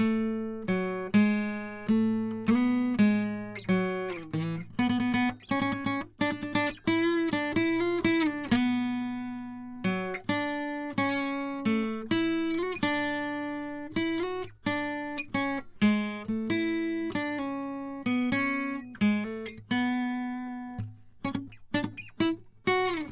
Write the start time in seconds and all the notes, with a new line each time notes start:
0.00 A3
0.69 F#3
1.15 G#3
1.90 A3
2.49 B3
3.00 G#3
3.70 F#3
4.34 E3
4.80 B3
4.91 B3
5.02 B3
5.15 B3
5.52 C#4
5.61 C#4
5.73 C#4
5.85 C#4
6.22 D4
6.31 D4
6.42 D4
6.56 D4
6.88 E4
7.34 D4
7.57 E4
7.81 F4
8.05 E4
8.22 D4
8.53 B3
9.85 F#3
10.30 D4
10.99 C#4
11.66 A3
12.12 E4
12.59 F#4
12.84 D4
13.97 E4
14.21 F#4
14.67 D4
15.35 C#4
15.82 G#3
16.30 A3
16.51 E4
17.16 D4
17.39 C#4
18.07 B3
18.33 C#4
19.02 G#3
19.25 A3
19.72 B3
21.25 C#4
21.36 C#4
21.75 D4
22.21 E4
22.68 F#4